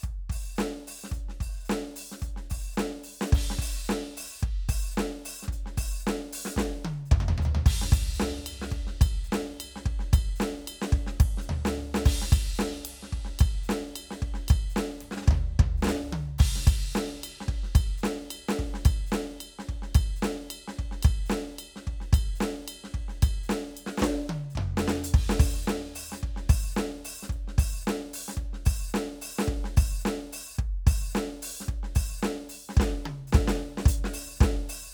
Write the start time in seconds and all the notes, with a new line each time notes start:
0.01 closed hi-hat, kick, hi-hat pedal
0.30 open hi-hat, kick
0.56 snare, hi-hat pedal
0.88 open hi-hat
1.04 snare
1.09 kick, hi-hat pedal
1.14 closed hi-hat
1.29 snare
1.41 open hi-hat, kick
1.66 hi-hat pedal
1.70 snare
1.97 open hi-hat
2.12 snare
2.20 closed hi-hat, kick, hi-hat pedal
2.37 snare
2.51 open hi-hat, kick
2.73 hi-hat pedal
2.78 snare
3.04 open hi-hat
3.22 snare
3.27 hi-hat pedal
3.33 kick, crash
3.51 snare
3.59 open hi-hat, kick
3.86 snare, hi-hat pedal
4.18 open hi-hat
4.40 kick, hi-hat pedal
4.69 open hi-hat, kick
4.93 hi-hat pedal
4.98 snare
5.26 open hi-hat
5.43 snare, hi-hat pedal
5.49 kick
5.53 closed hi-hat
5.67 snare
5.78 open hi-hat, kick
6.01 hi-hat pedal
6.07 snare
6.33 open hi-hat
6.46 snare
6.53 kick, snare, hi-hat pedal
6.59 snare
6.85 high tom
7.06 hi-hat pedal
7.12 kick, mid tom
7.21 mid tom
7.29 floor tom
7.39 floor tom
7.43 floor tom, hi-hat pedal
7.55 floor tom
7.66 kick, crash
7.82 snare
7.93 kick, ride, floor tom
8.15 hi-hat pedal
8.20 snare
8.47 ride bell
8.62 snare
8.71 kick, ride
8.87 snare
9.02 kick, ride bell
9.25 hi-hat pedal
9.33 snare
9.61 ride bell
9.76 snare
9.86 kick
10.00 snare
10.14 kick, ride bell
10.36 hi-hat pedal
10.41 snare
10.68 ride bell
10.82 snare
10.93 kick
11.07 snare
11.20 kick, ride
11.38 snare
11.42 hi-hat pedal
11.50 floor tom
11.66 snare
11.95 snare
12.06 kick, crash
12.22 snare
12.33 kick, ride bell
12.55 hi-hat pedal
12.60 snare
12.86 ride
13.03 snare
13.13 kick
13.25 snare
13.40 kick, ride bell
13.64 hi-hat pedal
13.70 snare
13.96 ride bell
14.11 snare
14.23 kick
14.35 snare
14.49 kick, ride bell
14.70 hi-hat pedal
14.77 snare
15.01 ride, floor tom
15.12 snare
15.17 snare
15.22 snare
15.26 kick, snare
15.31 snare, floor tom
15.60 kick, floor tom
15.78 hi-hat pedal
15.83 snare
15.88 snare
16.13 high tom
16.39 kick, crash
16.56 snare
16.67 kick, ride bell
16.92 snare, hi-hat pedal
17.24 ride bell
17.41 snare
17.49 kick
17.64 snare
17.76 kick, ride bell
17.98 hi-hat pedal
18.04 snare
18.31 ride bell
18.49 snare
18.59 kick
18.75 snare
18.86 kick, ride bell
19.07 hi-hat pedal
19.13 snare
19.41 ride bell
19.59 snare
19.69 kick
19.83 snare
19.95 kick, ride bell
20.17 hi-hat pedal
20.23 snare
20.51 ride bell
20.68 snare
20.79 kick
20.92 snare
21.03 kick, ride bell
21.26 snare, hi-hat pedal
21.59 ride bell
21.76 snare
21.88 kick
22.01 snare
22.13 kick, ride bell
22.36 hi-hat pedal
22.41 snare
22.69 ride bell
22.84 snare
22.95 kick
23.09 snare
23.23 kick, ride bell
23.44 hi-hat pedal
23.50 snare
23.77 ride bell
23.87 snare
23.98 kick, snare
24.03 snare
24.30 high tom
24.51 hi-hat pedal
24.56 kick, mid tom
24.78 snare
24.88 snare
25.05 closed hi-hat
25.14 kick, crash
25.30 snare
25.40 open hi-hat, kick
25.64 hi-hat pedal
25.68 snare
25.96 open hi-hat
26.13 snare
26.18 closed hi-hat, hi-hat pedal
26.24 kick
26.37 snare
26.50 open hi-hat, kick
26.73 hi-hat pedal
26.77 snare
27.05 open hi-hat
27.23 snare, hi-hat pedal
27.30 kick, closed hi-hat
27.48 snare
27.59 open hi-hat, kick
27.83 hi-hat pedal
27.88 snare
28.14 open hi-hat
28.29 snare
28.35 kick, hi-hat pedal
28.40 closed hi-hat
28.54 snare
28.66 open hi-hat, kick
28.90 hi-hat pedal
28.95 snare
29.22 open hi-hat
29.39 snare
29.45 kick, hi-hat pedal
29.65 snare
29.77 open hi-hat, kick
30.01 hi-hat pedal
30.06 snare
30.33 open hi-hat
30.55 kick, closed hi-hat, hi-hat pedal
30.87 open hi-hat, kick
31.12 snare, hi-hat pedal
31.43 open hi-hat
31.61 snare
31.66 kick, hi-hat pedal
31.84 snare
31.96 open hi-hat, kick
32.20 snare, hi-hat pedal
32.50 open hi-hat
32.70 snare, hi-hat pedal
32.77 kick, snare
33.06 high tom
33.28 hi-hat pedal
33.33 kick, snare
33.48 snare
33.78 snare
33.86 closed hi-hat, kick
34.05 snare
34.14 open hi-hat
34.38 kick, hi-hat pedal
34.42 snare
34.70 open hi-hat